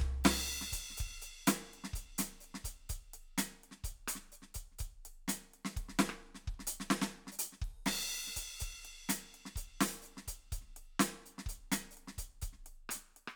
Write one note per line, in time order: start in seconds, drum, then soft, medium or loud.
0.01 kick soft
0.09 kick soft
0.24 snare loud
0.24 crash loud
0.48 closed hi-hat soft
0.61 snare soft
0.71 closed hi-hat medium
0.71 kick soft
0.71 hi-hat pedal soft
0.90 snare soft
0.97 closed hi-hat medium
0.97 kick soft
1.06 kick soft
1.06 snare soft
1.22 closed hi-hat medium
1.47 closed hi-hat loud
1.47 snare loud
1.73 closed hi-hat soft
1.84 snare medium
1.93 closed hi-hat medium
1.93 kick soft
2.18 closed hi-hat loud
2.18 snare medium
2.40 closed hi-hat soft
2.40 hi-hat pedal soft
2.54 snare medium
2.64 closed hi-hat medium
2.64 kick soft
2.89 closed hi-hat medium
2.89 kick soft
2.96 kick soft
3.13 closed hi-hat medium
3.38 closed hi-hat loud
3.38 snare medium
3.63 closed hi-hat soft
3.71 snare soft
3.84 closed hi-hat medium
3.84 kick soft
3.91 kick soft
4.08 closed hi-hat loud
4.08 cross-stick medium
4.15 snare soft
4.32 hi-hat pedal soft
4.42 snare soft
4.54 closed hi-hat medium
4.54 kick soft
4.71 snare soft
4.78 closed hi-hat medium
4.78 kick soft
5.05 closed hi-hat medium
5.28 closed hi-hat loud
5.28 snare medium
5.53 closed hi-hat soft
5.65 snare medium
5.76 kick soft
5.76 closed hi-hat soft
5.88 snare soft
5.99 snare loud
6.09 cross-stick medium
6.34 snare soft
6.47 kick soft
6.54 kick soft
6.59 snare soft
6.67 closed hi-hat loud
6.80 snare medium
6.90 snare medium
7.01 snare loud
7.27 snare soft
7.32 hi-hat pedal medium
7.39 closed hi-hat loud
7.52 snare soft
7.61 kick soft
7.61 crash soft
7.70 kick soft
7.86 snare medium
7.86 crash loud
8.27 snare soft
8.36 closed hi-hat medium
8.36 kick soft
8.60 closed hi-hat medium
8.60 kick soft
8.73 snare soft
8.85 closed hi-hat soft
9.09 closed hi-hat loud
9.09 snare medium
9.34 closed hi-hat soft
9.45 snare soft
9.56 closed hi-hat medium
9.56 kick soft
9.80 open hi-hat loud
9.80 snare medium
10.02 hi-hat pedal soft
10.06 closed hi-hat soft
10.17 snare soft
10.27 closed hi-hat medium
10.27 kick soft
10.52 closed hi-hat medium
10.52 kick soft
10.58 kick soft
10.58 snare soft
10.66 snare soft
10.68 snare soft
10.71 snare soft
10.76 closed hi-hat soft
10.99 closed hi-hat loud
10.99 snare loud
11.26 closed hi-hat soft
11.38 snare soft
11.46 closed hi-hat medium
11.46 kick soft
11.72 closed hi-hat loud
11.72 snare medium
11.91 hi-hat pedal soft
11.97 closed hi-hat soft
12.07 snare soft
12.18 closed hi-hat medium
12.18 kick soft
12.41 closed hi-hat medium
12.41 kick soft
12.52 snare soft
12.58 snare soft
12.66 closed hi-hat soft
12.89 closed hi-hat loud
12.89 cross-stick medium
12.95 snare soft
13.16 closed hi-hat soft
13.27 cross-stick medium